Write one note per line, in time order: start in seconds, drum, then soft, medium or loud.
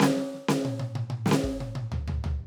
0.00 snare loud
0.02 snare loud
0.16 snare medium
0.34 snare soft
0.49 snare loud
0.65 high tom loud
0.79 high tom loud
0.95 high tom loud
1.10 high tom loud
1.26 snare loud
1.31 snare loud
1.43 kick medium
1.60 high tom loud
1.75 high tom loud
1.92 floor tom loud
2.08 floor tom loud
2.24 floor tom loud